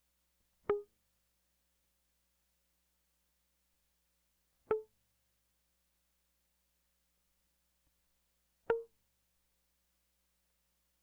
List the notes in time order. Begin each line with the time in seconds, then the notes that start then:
0.71 G#4
4.72 A4
8.71 A#4